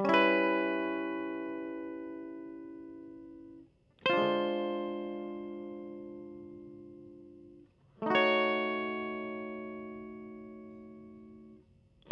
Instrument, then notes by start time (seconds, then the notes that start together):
electric guitar
0.00 G3
0.05 C#4
0.09 E4
0.14 B4
4.06 F4 C5
4.13 D4
4.18 G#3
8.02 A3 D#4
8.10 F#4
8.15 C#5